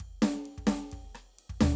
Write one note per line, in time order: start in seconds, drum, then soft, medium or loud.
0.00 kick soft
0.00 ride soft
0.22 snare loud
0.22 ride soft
0.46 ride soft
0.58 kick soft
0.67 snare loud
0.67 ride medium
0.92 kick soft
0.92 ride soft
1.15 cross-stick medium
1.15 ride soft
1.25 cross-stick soft
1.39 ride medium
1.50 kick medium
1.61 snare loud
1.61 floor tom loud